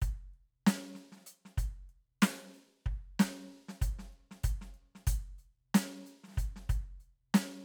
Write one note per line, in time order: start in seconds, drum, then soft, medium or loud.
0.02 closed hi-hat soft
0.02 kick medium
0.34 closed hi-hat soft
0.67 closed hi-hat medium
0.67 snare loud
0.95 closed hi-hat soft
0.95 snare soft
1.12 snare soft
1.17 snare soft
1.19 snare soft
1.26 closed hi-hat medium
1.45 snare soft
1.58 closed hi-hat medium
1.58 kick medium
1.89 closed hi-hat soft
2.22 closed hi-hat medium
2.22 snare loud
2.54 closed hi-hat soft
2.86 kick medium
3.20 closed hi-hat medium
3.20 snare loud
3.69 snare soft
3.82 closed hi-hat medium
3.82 kick medium
3.99 snare soft
4.13 closed hi-hat soft
4.31 snare soft
4.44 closed hi-hat medium
4.44 kick medium
4.61 snare soft
4.74 closed hi-hat soft
4.95 snare soft
5.07 closed hi-hat medium
5.07 kick medium
5.38 closed hi-hat soft
5.74 closed hi-hat medium
5.74 snare loud
6.06 closed hi-hat soft
6.24 snare soft
6.28 snare soft
6.31 snare soft
6.33 snare soft
6.37 closed hi-hat soft
6.37 kick medium
6.56 snare soft
6.69 closed hi-hat soft
6.69 kick medium
7.00 closed hi-hat soft
7.34 closed hi-hat medium
7.34 snare loud